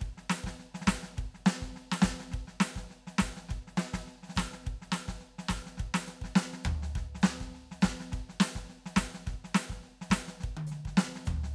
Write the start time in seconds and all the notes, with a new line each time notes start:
0.01 kick, snare
0.11 kick
0.18 snare
0.30 snare, hi-hat pedal
0.44 kick, snare
0.50 kick
0.60 snare
0.75 snare
0.82 snare
0.88 kick, snare, hi-hat pedal
1.04 snare
1.17 kick, snare
1.25 kick
1.35 snare
1.46 snare, hi-hat pedal
1.62 kick, snare
1.76 snare
1.92 snare
2.03 kick, snare, hi-hat pedal
2.13 kick
2.20 snare
2.32 kick, snare
2.41 kick
2.48 snare
2.61 snare, hi-hat pedal
2.76 kick, snare
2.91 snare
3.08 snare
3.19 kick, snare, hi-hat pedal
3.37 snare
3.49 kick, snare
3.58 kick
3.68 snare
3.78 snare, hi-hat pedal
3.94 kick, snare
4.08 snare
4.12 snare
4.17 snare
4.23 snare
4.30 snare
4.36 kick, snare, hi-hat pedal
4.54 snare
4.66 kick, snare
4.74 kick
4.82 snare
4.93 snare, hi-hat pedal
5.09 kick, snare
5.21 snare
5.39 snare
5.49 kick, snare, hi-hat pedal
5.67 snare
5.78 kick, snare
5.87 kick
5.95 snare
6.06 snare, hi-hat pedal
6.22 kick, snare
6.36 snare
6.54 snare
6.65 kick, hi-hat pedal, floor tom
6.83 snare
6.96 kick, snare
7.03 kick
7.15 snare
7.22 snare, hi-hat pedal
7.41 kick, snare
7.55 snare
7.72 snare
7.82 kick, snare, hi-hat pedal
8.01 snare
8.12 kick, snare
8.20 kick
8.30 snare
8.41 snare, hi-hat pedal
8.56 kick, snare
8.70 snare
8.86 snare
8.97 kick, snare, hi-hat pedal
9.06 kick
9.15 snare
9.27 kick, snare
9.34 kick
9.45 snare
9.55 snare, hi-hat pedal
9.70 kick, snare
9.84 snare
10.02 snare
10.11 kick, snare, hi-hat pedal
10.28 snare
10.41 kick, snare
10.50 kick
10.54 kick, high tom
10.67 hi-hat pedal
10.72 snare
10.86 kick, snare
10.98 snare
11.16 snare
11.26 kick, floor tom, hi-hat pedal
11.34 kick
11.37 kick
11.44 snare